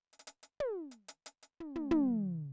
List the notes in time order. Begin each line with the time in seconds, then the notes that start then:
0.13 closed hi-hat
0.19 closed hi-hat
0.27 closed hi-hat
0.43 closed hi-hat
0.60 high tom
0.91 closed hi-hat
1.09 closed hi-hat
1.26 closed hi-hat
1.43 closed hi-hat
1.60 floor tom
1.75 floor tom
1.90 floor tom